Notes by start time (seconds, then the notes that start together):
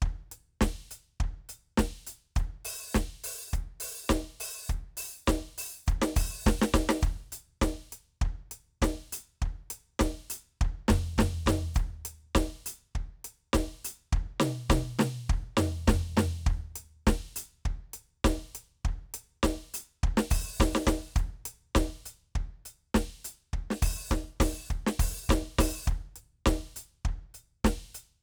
0.02 kick, ride
0.32 closed hi-hat
0.61 kick, snare
0.91 closed hi-hat
1.20 kick
1.49 closed hi-hat
1.78 kick, snare
2.07 closed hi-hat
2.36 kick, hi-hat pedal
2.65 open hi-hat
2.94 kick, snare, hi-hat pedal
3.24 open hi-hat
3.52 kick, hi-hat pedal
3.80 open hi-hat
4.09 kick, snare, hi-hat pedal
4.40 open hi-hat
4.69 kick, hi-hat pedal
4.97 open hi-hat
5.27 kick, snare, hi-hat pedal
5.58 open hi-hat
5.87 kick, hi-hat pedal
6.02 snare
6.16 open hi-hat, kick
6.46 kick, snare
6.62 snare
6.74 kick, snare
6.89 snare
7.01 kick, hi-hat pedal
7.32 closed hi-hat
7.62 kick, snare
7.92 closed hi-hat
8.21 kick
8.51 closed hi-hat
8.82 kick, snare
9.12 closed hi-hat
9.42 kick, crash
9.70 closed hi-hat
9.99 kick, snare
10.30 closed hi-hat
10.61 kick
10.88 kick, snare, floor tom
11.18 kick, snare, floor tom
11.46 kick, snare, floor tom
11.74 kick, hi-hat pedal
12.05 closed hi-hat
12.35 kick, snare
12.66 closed hi-hat
12.95 kick
13.25 closed hi-hat
13.53 kick, snare
13.85 closed hi-hat
14.13 kick
14.40 snare, mid tom
14.70 kick, snare, mid tom
14.99 snare, mid tom
15.30 kick
15.57 snare, floor tom
15.88 kick, snare, floor tom
16.17 snare, floor tom
16.46 kick
16.76 closed hi-hat
17.07 kick, snare
17.36 closed hi-hat
17.65 kick
17.94 closed hi-hat
18.25 kick, snare
18.55 closed hi-hat
18.85 kick, ride
19.14 closed hi-hat
19.43 kick, snare
19.74 closed hi-hat
20.03 kick
20.17 snare
20.31 open hi-hat, kick
20.60 kick, snare
20.75 snare
20.87 kick, snare
21.16 kick, hi-hat pedal
21.45 closed hi-hat
21.75 kick, snare
22.06 closed hi-hat
22.35 kick
22.65 closed hi-hat
22.94 kick, snare
23.25 closed hi-hat
23.53 kick
23.70 snare
23.82 open hi-hat, kick
24.10 kick, snare, hi-hat pedal
24.40 open hi-hat, kick, snare
24.68 kick, hi-hat pedal
24.87 snare
24.99 open hi-hat, kick
25.29 kick, snare, hi-hat pedal
25.59 open hi-hat, kick, snare
25.86 kick, hi-hat pedal
26.16 closed hi-hat
26.46 kick, snare
26.76 closed hi-hat
27.05 kick
27.34 closed hi-hat
27.64 kick, snare
27.95 closed hi-hat